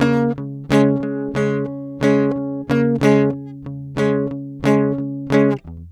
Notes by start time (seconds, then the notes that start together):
0.01 C#3 A#3
0.31 A#3
0.39 C#3
0.71 C#3 G#3 C#4
0.98 C#3
1.04 G#3
1.36 C#3 G#3 C#4
1.66 C#3
2.02 C#3 G#3 C#4
2.31 C#3 G#3
2.71 C#3 A#3
3.02 C#3 G#3 C#4
3.31 C#3
3.67 C#3
3.98 C#3 G#3 C#4
4.32 C#3
4.65 C#3 G#3 C#4
4.93 G#3
5.00 C#3
5.31 C#3 G#3
5.35 C#4
5.69 E2